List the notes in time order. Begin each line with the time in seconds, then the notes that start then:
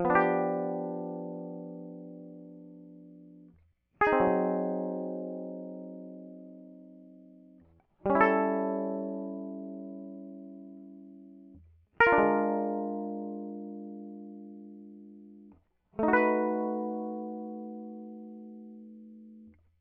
0.00 F3
0.05 B3
0.10 D4
0.15 G4
4.01 G#4
4.07 D#4
4.13 C4
4.21 F#3
8.06 G3 C#4
8.15 E4
8.21 A4
11.56 E2
12.00 A#4
12.06 F4
12.12 D4
12.18 G#3
15.99 A3 D#4
16.08 F#4
16.13 B4